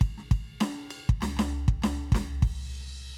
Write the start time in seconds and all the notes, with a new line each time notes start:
0.01 kick, ride bell
0.18 snare
0.31 kick, ride bell
0.60 snare, ride bell
0.91 ride bell
1.09 kick
1.21 snare, floor tom
1.37 snare, floor tom
1.68 kick
1.82 snare, floor tom
2.12 kick, snare, floor tom
2.42 open hi-hat, kick, crash